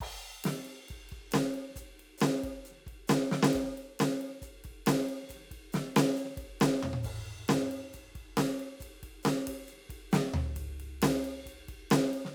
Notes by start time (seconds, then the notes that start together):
0.00 kick, crash
0.07 kick
0.10 kick
0.44 snare, hi-hat pedal, ride
0.65 ride
0.76 snare
0.88 kick, hi-hat pedal, ride
1.09 kick, ride
1.31 snare, hi-hat pedal, ride
1.54 ride
1.70 snare
1.76 kick, hi-hat pedal, ride
1.81 kick
1.99 ride
2.18 snare, hi-hat pedal, ride
2.43 kick, ride
2.49 kick
2.65 hi-hat pedal, ride
2.71 snare
2.76 snare
2.80 snare
2.86 kick, ride
2.92 kick
3.07 snare, hi-hat pedal, ride
3.31 snare
3.43 snare
3.53 kick, hi-hat pedal, ride
3.60 kick, snare
3.67 snare
3.73 snare
3.77 ride
3.99 snare, hi-hat pedal, ride
4.21 ride
4.29 snare
4.36 snare
4.42 kick, hi-hat pedal, ride
4.55 snare
4.64 kick, ride
4.70 kick
4.86 snare, hi-hat pedal, ride
5.09 ride
5.22 snare
5.29 kick, hi-hat pedal, ride
5.35 snare
5.40 snare
5.44 snare
5.47 kick, snare
5.52 ride
5.56 kick
5.72 snare, hi-hat pedal, ride
5.96 snare, ride
6.17 hi-hat pedal, ride
6.24 snare
6.30 snare
6.35 kick, snare, ride
6.43 kick
6.60 snare, hi-hat pedal, ride
6.83 mid tom
6.93 high tom
7.03 kick, hi-hat pedal, crash
7.10 kick
7.25 ride
7.48 snare, hi-hat pedal, ride
7.71 ride
7.83 snare
7.93 kick, hi-hat pedal, ride
8.15 kick, ride
8.37 snare, hi-hat pedal, ride
8.59 ride
8.80 kick, hi-hat pedal, ride
8.85 kick
9.03 kick, ride
9.23 snare, hi-hat pedal, ride
9.47 kick, ride
9.67 hi-hat pedal, ride
9.71 snare
9.76 snare
9.79 snare
9.82 snare
9.85 snare
9.89 kick, ride
10.11 snare, hi-hat pedal, ride
10.34 floor tom
10.55 kick, hi-hat pedal, ride
10.80 ride
11.02 snare, hi-hat pedal, ride
11.24 ride
11.46 kick, hi-hat pedal, ride
11.59 snare
11.68 kick, ride
11.74 kick
11.90 snare, hi-hat pedal, ride
12.13 ride
12.25 snare